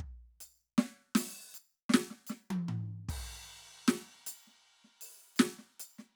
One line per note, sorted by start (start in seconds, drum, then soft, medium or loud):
0.01 kick soft
0.42 percussion medium
0.79 snare loud
1.16 snare loud
1.16 percussion loud
1.55 percussion medium
1.91 snare medium
1.95 snare loud
2.12 snare soft
2.28 snare medium
2.28 percussion medium
2.51 high tom loud
2.70 floor tom medium
3.10 kick medium
3.10 crash medium
3.89 snare loud
4.02 snare soft
4.08 snare soft
4.28 percussion loud
4.48 snare soft
4.85 snare soft
5.02 percussion medium
5.37 snare loud
5.37 percussion medium
5.59 snare soft
5.81 percussion medium
6.00 snare soft